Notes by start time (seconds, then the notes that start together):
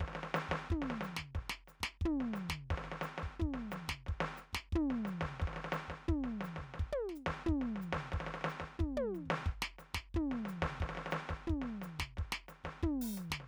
0.01 kick, snare
0.08 snare
0.14 snare
0.16 snare
0.24 snare
0.35 snare, hi-hat pedal
0.49 kick, snare
0.71 kick, floor tom
0.83 snare
0.91 snare
1.02 snare, hi-hat pedal
1.17 kick, snare
1.36 kick, snare
1.50 snare
1.68 snare, hi-hat pedal
1.81 kick, snare
2.02 kick, floor tom
2.21 snare
2.34 snare, hi-hat pedal
2.50 kick, snare
2.71 kick, snare
2.78 snare
2.85 snare
2.92 snare
3.02 snare, hi-hat pedal
3.19 snare
3.24 kick
3.40 kick, floor tom
3.54 snare
3.72 snare, hi-hat pedal
3.89 kick, snare
4.07 kick, snare
4.21 snare
4.38 snare, hi-hat pedal
4.54 kick, snare
4.73 kick, floor tom
4.91 snare
5.06 snare, hi-hat pedal
5.22 kick, snare
5.40 kick, snare
5.48 snare
5.54 snare
5.57 snare
5.65 snare
5.73 snare, hi-hat pedal
5.89 kick, snare
6.08 kick, floor tom
6.25 snare
6.41 snare, hi-hat pedal
6.57 kick, snare
6.75 snare
6.80 kick
6.93 high tom
7.10 snare
7.16 hi-hat pedal
7.27 kick, snare
7.46 kick, floor tom
7.62 snare
7.77 snare
7.82 hi-hat pedal
7.93 kick, snare
8.13 kick, snare
8.21 snare
8.27 snare
8.35 snare
8.42 snare
8.45 snare
8.50 hi-hat pedal
8.61 kick, snare
8.79 kick, floor tom
8.97 high tom
9.15 snare, hi-hat pedal
9.26 kick
9.31 snare
9.47 kick, snare
9.63 snare
9.79 snare, hi-hat pedal
9.95 kick, snare
10.15 kick, floor tom
10.32 snare
10.46 snare, hi-hat pedal
10.63 kick, snare
10.81 kick, snare
10.90 snare
10.96 snare
10.98 snare
11.07 snare
11.11 snare, hi-hat pedal
11.30 kick, snare
11.47 kick, floor tom
11.62 snare
11.82 snare, hi-hat pedal
12.00 kick, snare
12.18 kick, snare
12.33 snare
12.49 snare, hi-hat pedal
12.65 kick, snare
12.83 kick, floor tom
13.02 open hi-hat
13.17 snare, hi-hat pedal
13.31 kick, snare
13.41 snare